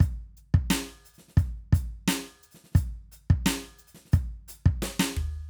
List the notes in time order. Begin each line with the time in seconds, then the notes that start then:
0.01 closed hi-hat, kick, snare
0.05 snare
0.38 closed hi-hat
0.55 kick
0.71 closed hi-hat, snare
1.06 closed hi-hat
1.14 closed hi-hat
1.19 snare
1.29 snare
1.38 closed hi-hat, kick, snare
1.44 snare
1.56 snare
1.74 closed hi-hat, kick
2.09 closed hi-hat, snare
2.44 closed hi-hat
2.52 closed hi-hat, snare
2.65 snare
2.73 closed hi-hat, kick, snare
2.81 snare
3.12 closed hi-hat
3.31 kick
3.47 closed hi-hat, snare
3.79 closed hi-hat
3.88 closed hi-hat
3.95 snare
4.06 snare
4.13 closed hi-hat, kick
4.17 snare
4.49 closed hi-hat
4.67 kick
4.83 snare
5.00 snare
5.17 mid tom